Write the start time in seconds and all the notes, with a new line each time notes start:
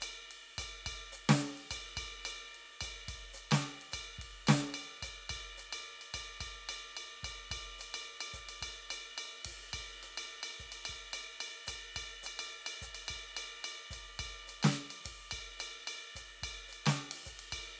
0.01 hi-hat pedal, ride bell
0.31 ride
0.58 kick, hi-hat pedal, ride bell
0.86 kick, ride bell
0.95 kick
1.12 hi-hat pedal, ride
1.29 snare, closed hi-hat, ride
1.58 ride
1.71 kick, hi-hat pedal, ride bell
1.97 kick, ride bell
2.05 kick
2.25 hi-hat pedal, ride bell
2.55 ride
2.81 kick, hi-hat pedal, ride bell
2.87 kick
3.08 kick, ride bell
3.14 kick
3.17 kick
3.34 hi-hat pedal
3.38 ride bell
3.51 snare, ride bell
3.81 ride
3.92 kick, hi-hat pedal, ride bell
4.19 kick, ride
4.27 kick
4.47 snare, hi-hat pedal, ride bell
4.74 ride bell
5.02 kick, hi-hat pedal, ride bell
5.30 kick, ride bell
5.36 kick
5.39 kick
5.57 hi-hat pedal, ride bell
5.73 ride bell
6.01 ride bell
6.14 kick, hi-hat pedal, ride bell
6.41 kick, ride bell
6.49 kick
6.69 hi-hat pedal, ride bell
6.97 ride bell
7.23 kick, hi-hat pedal, ride bell
7.51 kick, ride bell
7.57 kick
7.79 hi-hat pedal, ride bell
7.94 ride bell
8.21 ride bell
8.34 kick, hi-hat pedal
8.49 ride bell
8.62 kick, ride bell
8.91 hi-hat pedal, ride bell
9.18 ride bell
9.45 kick, hi-hat pedal, ride
9.73 kick, ride bell
10.03 hi-hat pedal, ride bell
10.18 ride bell
10.43 ride bell
10.59 kick, hi-hat pedal
10.72 ride bell
10.85 kick, ride bell
11.13 hi-hat pedal, ride bell
11.41 ride bell
11.67 kick, hi-hat pedal, ride bell
11.96 kick, ride bell
12.23 hi-hat pedal, ride bell
12.39 ride bell
12.66 ride bell
12.82 kick, hi-hat pedal
12.95 ride bell
13.08 kick, ride bell
13.37 hi-hat pedal, ride bell
13.64 ride bell
13.91 kick, hi-hat pedal, ride bell
14.19 kick, ride bell
14.29 kick
14.47 hi-hat pedal, ride bell
14.63 snare, ride bell
14.91 ride bell
15.04 kick, hi-hat pedal, ride
15.31 kick, ride bell
15.59 hi-hat pedal, ride bell
15.87 ride bell
16.15 kick, hi-hat pedal, ride bell
16.43 kick, ride bell
16.48 kick
16.68 hi-hat pedal
16.73 ride bell
16.86 snare, ride bell
17.11 ride
17.26 kick, hi-hat pedal
17.39 ride
17.52 kick, ride bell